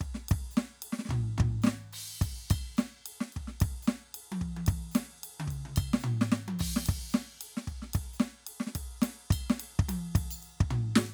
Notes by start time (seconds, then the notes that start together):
0.01 kick, ride
0.15 snare
0.29 kick, ride
0.51 percussion
0.57 snare
0.82 ride
0.93 snare
0.99 snare
1.05 kick, snare
1.11 floor tom
1.38 kick, floor tom
1.62 snare, percussion
1.67 snare
1.93 crash
2.21 kick, ride
2.50 kick, ride bell
2.77 snare, percussion
3.06 ride
3.21 snare
3.32 kick, ride
3.47 snare
3.61 kick, ride
3.83 percussion
3.88 snare
4.14 ride
4.32 high tom
4.41 kick
4.57 high tom
4.67 kick, ride
4.92 snare, ride, percussion
5.24 ride
5.40 mid tom
5.48 kick, ride
5.65 mid tom
5.76 kick, ride bell
5.94 snare
6.00 percussion
6.04 floor tom
6.21 snare
6.32 snare
6.48 high tom
6.59 kick, crash
6.76 snare
6.86 kick, ride
7.10 percussion
7.14 snare
7.41 ride
7.57 snare
7.67 kick, ride
7.82 snare
7.94 kick, ride
8.14 percussion
8.20 snare
8.47 ride
8.60 snare
8.67 snare
8.75 kick, ride
9.02 snare, ride
9.31 kick, ride bell
9.50 snare
9.60 ride
9.79 kick
9.89 high tom, ride
10.15 kick, ride
10.31 percussion
10.43 ride
10.61 kick
10.71 floor tom
10.96 snare